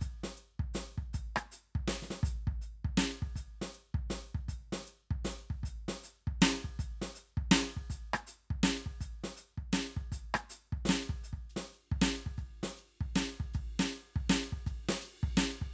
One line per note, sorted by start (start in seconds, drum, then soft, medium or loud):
0.01 closed hi-hat medium
0.01 kick medium
0.24 snare medium
0.37 closed hi-hat medium
0.60 kick medium
0.74 closed hi-hat loud
0.74 snare medium
0.98 kick medium
1.14 closed hi-hat medium
1.14 kick medium
1.36 cross-stick medium
1.52 closed hi-hat medium
1.75 kick medium
1.88 snare loud
2.03 snare medium
2.11 snare medium
2.23 closed hi-hat loud
2.23 kick medium
2.48 kick medium
2.62 closed hi-hat medium
2.85 kick medium
2.98 closed hi-hat medium
2.98 snare loud
3.23 kick medium
3.36 closed hi-hat medium
3.36 kick soft
3.62 snare medium
3.74 closed hi-hat medium
3.95 kick medium
4.10 closed hi-hat medium
4.10 snare medium
4.35 kick medium
4.40 snare soft
4.49 closed hi-hat medium
4.49 kick soft
4.73 snare medium
4.82 snare soft
4.87 closed hi-hat medium
5.11 kick medium
5.25 snare medium
5.25 closed hi-hat medium
5.50 kick medium
5.64 closed hi-hat medium
5.64 kick soft
5.89 snare medium
6.03 closed hi-hat medium
6.28 kick medium
6.41 closed hi-hat loud
6.41 snare loud
6.65 kick soft
6.79 closed hi-hat medium
6.79 kick medium
7.02 snare medium
7.15 closed hi-hat medium
7.38 kick medium
7.52 closed hi-hat loud
7.52 snare loud
7.77 kick soft
7.90 closed hi-hat medium
7.90 kick soft
8.14 cross-stick medium
8.27 closed hi-hat loud
8.51 kick medium
8.64 closed hi-hat loud
8.64 snare loud
8.86 kick soft
9.01 closed hi-hat medium
9.01 kick soft
9.24 snare medium
9.37 closed hi-hat medium
9.58 kick soft
9.73 closed hi-hat loud
9.73 snare medium
9.97 kick medium
10.12 closed hi-hat medium
10.12 kick soft
10.35 cross-stick medium
10.50 closed hi-hat loud
10.73 kick medium
10.86 snare loud
10.89 snare loud
11.10 kick medium
11.24 closed hi-hat medium
11.33 kick soft
11.50 ride soft
11.57 snare medium
11.73 ride soft
11.92 kick medium
12.02 snare loud
12.02 ride soft
12.27 kick soft
12.38 kick soft
12.38 ride soft
12.63 snare loud
12.78 ride soft
13.01 kick medium
13.16 snare medium
13.16 ride soft
13.40 kick medium
13.54 kick medium
13.54 ride medium
13.80 snare medium
13.95 ride medium
14.16 kick medium
14.30 snare loud
14.30 ride medium
14.53 kick soft
14.67 kick medium
14.67 ride medium
14.89 snare loud
15.02 ride loud
15.23 kick medium
15.37 snare loud
15.37 ride bell medium
15.62 kick medium